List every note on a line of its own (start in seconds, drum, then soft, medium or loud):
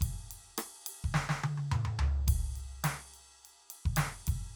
0.01 kick medium
0.01 ride loud
0.31 ride medium
0.58 cross-stick medium
0.58 ride loud
0.86 ride loud
1.04 kick medium
1.14 snare loud
1.29 snare medium
1.44 high tom loud
1.58 high tom medium
1.72 mid tom loud
1.85 mid tom loud
1.99 floor tom loud
2.28 kick medium
2.28 ride loud
2.56 ride soft
2.84 snare loud
2.84 ride loud
3.14 ride soft
3.45 ride soft
3.70 ride medium
3.85 kick medium
3.96 snare loud
3.96 ride loud
4.27 kick medium
4.27 ride medium